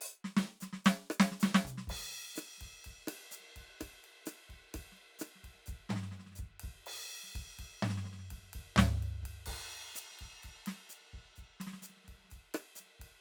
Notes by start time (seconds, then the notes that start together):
0.01 open hi-hat
0.07 hi-hat pedal
0.24 snare
0.37 snare
0.60 snare, hi-hat pedal
0.73 snare
0.84 snare, hi-hat pedal
1.10 cross-stick, hi-hat pedal
1.20 snare
1.31 snare
1.40 snare, hi-hat pedal
1.55 snare
1.64 kick, hi-hat pedal, high tom
1.69 kick
1.78 snare
1.87 kick, snare, crash
1.94 kick
1.99 snare
2.04 snare
2.07 snare
2.10 snare
2.36 cross-stick, hi-hat pedal, ride
2.58 kick, snare, ride
2.66 kick
2.84 kick, hi-hat pedal, ride
2.91 kick
3.07 cross-stick, ride
3.31 hi-hat pedal, ride
3.40 snare
3.56 kick, ride
3.61 kick
3.80 kick, cross-stick, hi-hat pedal, ride
3.86 kick
4.04 ride
4.26 cross-stick, hi-hat pedal, ride
4.49 kick, ride
4.54 kick
4.74 kick, cross-stick, hi-hat pedal, ride
4.92 snare
4.97 ride
5.19 cross-stick, hi-hat pedal, ride
5.35 snare
5.44 kick, ride
5.54 snare
5.66 kick, hi-hat pedal, ride
5.89 snare, mid tom
5.96 snare
6.03 snare
6.11 snare, mid tom
6.19 snare
6.26 snare
6.32 snare, hi-hat pedal
6.39 kick, snare
6.45 snare
6.48 snare
6.60 kick, ride
6.86 crash
7.23 snare
7.28 snare
7.35 kick, ride
7.41 kick
7.58 kick, snare, ride
7.83 snare, mid tom
7.89 snare, mid tom
7.97 snare
8.04 snare, mid tom
8.13 snare
8.19 snare
8.24 snare
8.28 kick, snare, ride
8.33 kick, snare
8.37 snare
8.40 snare
8.48 snare
8.53 kick, ride
8.60 kick
8.76 snare, floor tom
8.87 snare
9.00 snare, ride
9.23 kick, ride
9.28 kick
9.46 kick, crash
9.53 kick
9.95 hi-hat pedal, ride
10.11 snare
10.19 kick, ride
10.26 kick
10.42 kick, hi-hat pedal, ride
10.49 kick
10.66 snare, ride
10.89 hi-hat pedal
11.00 snare
11.11 kick, ride
11.19 kick
11.34 kick, snare, hi-hat pedal, ride
11.43 kick
11.60 snare, ride
11.67 snare
11.73 snare
11.82 snare, hi-hat pedal, ride
11.89 snare
11.97 snare
12.04 kick, snare, ride
12.11 kick, snare
12.18 snare
12.24 snare
12.29 kick, snare, hi-hat pedal, ride
12.37 kick
12.54 cross-stick, ride
12.75 hi-hat pedal
12.80 snare
12.86 snare
13.00 kick, ride
13.05 kick